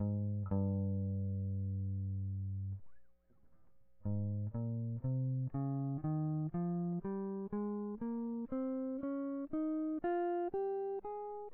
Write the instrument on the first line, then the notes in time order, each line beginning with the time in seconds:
electric guitar
0.02 G#2
0.46 G2
0.53 G2
4.08 G#2
4.56 A#2
5.06 C3
5.56 C#3
6.05 D#3
6.55 F3
7.05 G3
7.53 G#3
8.02 A#3
8.53 C4
9.03 C#4
9.54 D#4
10.04 F4
10.54 G4
11.05 G#4